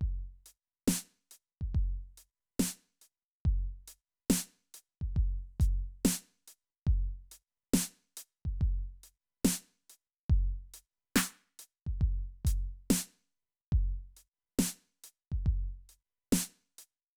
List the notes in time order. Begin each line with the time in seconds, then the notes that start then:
0.01 kick, crash
0.46 closed hi-hat
0.88 snare
1.31 closed hi-hat
1.61 kick
1.75 kick, crash
2.18 closed hi-hat
2.59 snare
3.01 closed hi-hat
3.45 kick
3.88 closed hi-hat
4.30 snare
4.74 closed hi-hat
5.01 kick
5.16 kick, crash
5.60 kick, closed hi-hat
6.05 snare
6.48 closed hi-hat
6.87 kick
7.31 closed hi-hat
7.74 snare
8.17 closed hi-hat
8.45 kick
8.61 kick
9.03 closed hi-hat
9.45 snare
9.90 closed hi-hat
10.30 kick
10.74 closed hi-hat
11.16 snare
11.59 closed hi-hat
11.87 kick
12.01 kick
12.45 closed hi-hat, kick
12.90 snare
13.72 kick, ride
14.17 closed hi-hat
14.59 snare
15.04 closed hi-hat
15.32 kick
15.46 kick
15.89 closed hi-hat
16.32 snare
16.78 closed hi-hat